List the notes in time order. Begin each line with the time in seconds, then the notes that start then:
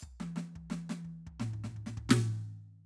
0.01 kick, percussion
0.21 snare, high tom
0.37 snare, high tom
0.56 kick
0.71 snare, high tom, percussion
0.90 snare, high tom
1.05 kick
1.27 kick
1.40 snare, floor tom
1.54 kick
1.64 snare, floor tom
1.77 kick
1.87 snare, floor tom
1.98 kick
2.10 snare, floor tom